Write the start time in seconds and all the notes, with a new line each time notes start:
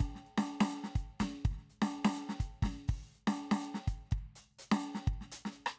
0.01 closed hi-hat, kick
0.16 snare
0.27 closed hi-hat
0.38 snare
0.51 closed hi-hat
0.61 snare
0.69 hi-hat pedal
0.73 closed hi-hat
0.84 snare
0.96 closed hi-hat, kick
1.20 closed hi-hat, kick, snare
1.45 closed hi-hat, kick
1.52 kick, snare
1.55 kick, snare
1.70 closed hi-hat
1.82 snare
1.94 closed hi-hat
2.05 snare
2.16 hi-hat pedal
2.30 snare
2.41 closed hi-hat, kick
2.63 open hi-hat, kick, snare
2.89 open hi-hat, kick
2.93 snare
2.99 snare
3.15 closed hi-hat
3.28 snare
3.40 closed hi-hat
3.52 snare
3.62 closed hi-hat, hi-hat pedal
3.75 snare
3.88 closed hi-hat, kick
4.06 snare
4.12 kick, closed hi-hat
4.19 kick
4.36 open hi-hat
4.59 closed hi-hat, hi-hat pedal
4.72 snare
4.85 closed hi-hat
4.95 snare
5.08 kick, closed hi-hat
5.14 kick
5.22 snare
5.32 closed hi-hat
5.46 snare
5.52 hi-hat pedal
5.57 closed hi-hat
5.67 cross-stick